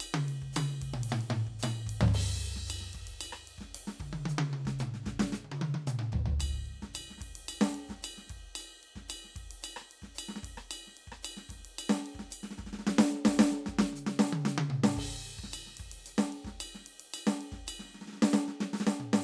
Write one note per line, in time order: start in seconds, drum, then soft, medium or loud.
0.01 hi-hat pedal medium
0.01 ride bell loud
0.15 high tom loud
0.29 ride medium
0.42 kick soft
0.54 hi-hat pedal medium
0.54 high tom loud
0.54 ride bell loud
0.82 kick soft
0.82 ride medium
0.94 mid tom loud
1.04 ride medium
1.09 hi-hat pedal medium
1.09 mid tom loud
1.22 ride soft
1.31 mid tom loud
1.47 kick soft
1.60 hi-hat pedal medium
1.60 ride bell loud
1.64 mid tom loud
1.87 kick soft
1.87 ride medium
1.94 kick soft
2.02 floor tom loud
2.09 floor tom medium
2.15 hi-hat pedal medium
2.15 crash loud
2.56 kick soft
2.56 snare soft
2.67 hi-hat pedal medium
2.67 ride bell loud
2.81 snare soft
2.87 snare soft
2.94 kick soft
2.94 ride medium
3.01 kick soft
3.08 ride medium
3.21 hi-hat pedal medium
3.21 ride bell loud
3.33 cross-stick medium
3.48 ride medium
3.59 kick soft
3.59 snare soft
3.75 hi-hat pedal medium
3.75 ride loud
3.88 snare medium
4.00 kick soft
4.00 high tom medium
4.07 kick soft
4.14 high tom medium
4.26 hi-hat pedal medium
4.26 high tom loud
4.39 high tom loud
4.54 high tom medium
4.66 kick soft
4.66 snare medium
4.80 hi-hat pedal medium
4.80 mid tom loud
4.95 snare soft
5.04 kick soft
5.04 snare soft
5.07 snare medium
5.20 snare loud
5.33 snare medium
5.33 hi-hat pedal medium
5.45 high tom medium
5.52 high tom medium
5.62 high tom loud
5.75 high tom loud
5.88 hi-hat pedal loud
5.88 mid tom loud
6.00 mid tom medium
6.13 kick soft
6.13 floor tom loud
6.19 kick soft
6.26 floor tom loud
6.40 kick medium
6.40 hi-hat pedal medium
6.40 ride bell loud
6.53 kick soft
6.67 ride soft
6.83 kick soft
6.83 snare soft
6.95 hi-hat pedal medium
6.95 ride bell loud
7.11 snare soft
7.18 kick soft
7.18 snare soft
7.22 ride medium
7.27 kick soft
7.36 ride medium
7.49 hi-hat pedal medium
7.49 ride bell loud
7.62 snare loud
7.75 ride medium
7.90 kick soft
7.90 snare soft
8.03 hi-hat pedal medium
8.03 ride bell loud
8.18 snare soft
8.27 kick soft
8.27 snare soft
8.27 ride medium
8.33 snare soft
8.36 snare soft
8.39 snare soft
8.42 snare soft
8.56 hi-hat pedal medium
8.56 ride bell loud
8.84 ride soft
8.96 kick soft
8.96 snare soft
9.09 hi-hat pedal medium
9.09 ride bell loud
9.25 snare soft
9.35 kick soft
9.35 snare soft
9.35 ride medium
9.52 ride medium
9.63 hi-hat pedal medium
9.63 ride bell loud
9.77 cross-stick medium
9.82 cross-stick soft
9.92 ride medium
10.03 kick soft
10.03 snare soft
10.16 hi-hat pedal medium
10.16 ride bell loud
10.29 snare soft
10.36 snare soft
10.44 kick soft
10.44 ride medium
10.58 cross-stick medium
10.72 hi-hat pedal medium
10.72 ride bell loud
10.88 snare soft
10.98 ride soft
11.08 kick soft
11.12 cross-stick medium
11.23 hi-hat pedal medium
11.23 ride bell loud
11.37 snare soft
11.50 kick soft
11.50 snare soft
11.50 ride medium
11.57 cross-stick soft
11.57 snare soft
11.66 ride medium
11.79 hi-hat pedal medium
11.79 ride bell loud
11.90 snare medium
11.97 snare soft
12.07 ride soft
12.15 kick soft
12.20 snare soft
12.31 hi-hat pedal medium
12.31 ride bell medium
12.44 snare soft
12.51 snare soft
12.58 kick soft
12.58 snare soft
12.65 kick soft
12.65 snare soft
12.74 snare soft
12.79 snare soft
12.87 snare loud
12.87 hi-hat pedal medium
12.99 snare loud
13.15 snare soft
13.26 kick soft
13.26 snare loud
13.40 snare loud
13.40 hi-hat pedal medium
13.53 snare soft
13.67 kick soft
13.67 snare medium
13.75 kick soft
13.79 snare loud
13.93 hi-hat pedal medium
13.93 high tom medium
14.07 snare medium
14.20 snare loud
14.33 high tom loud
14.46 snare medium
14.46 hi-hat pedal medium
14.58 high tom loud
14.71 mid tom loud
14.84 snare loud
14.97 kick medium
14.97 hi-hat pedal medium
14.97 crash loud
15.10 kick soft
15.39 kick soft
15.44 snare soft
15.52 hi-hat pedal medium
15.52 ride bell loud
15.67 snare soft
15.73 snare soft
15.78 kick soft
15.78 ride medium
15.90 snare soft
15.90 ride medium
16.07 hi-hat pedal medium
16.07 ride bell medium
16.19 snare medium
16.33 ride soft
16.45 kick soft
16.45 snare soft
16.60 hi-hat pedal medium
16.60 ride bell loud
16.75 snare soft
16.81 snare soft
16.87 ride medium
17.00 ride medium
17.14 hi-hat pedal medium
17.14 ride bell loud
17.28 snare medium
17.42 ride soft
17.53 kick soft
17.53 snare soft
17.58 kick soft
17.68 hi-hat pedal medium
17.68 ride bell loud
17.80 snare soft
17.85 snare soft
17.90 snare soft
17.95 snare soft
18.02 snare soft
18.07 snare soft
18.13 snare soft
18.18 snare soft
18.23 snare loud
18.23 hi-hat pedal medium
18.34 snare medium
18.49 snare soft
18.61 snare medium
18.74 snare medium
18.74 hi-hat pedal medium
18.81 snare medium
18.87 snare medium
19.01 mid tom medium
19.14 snare loud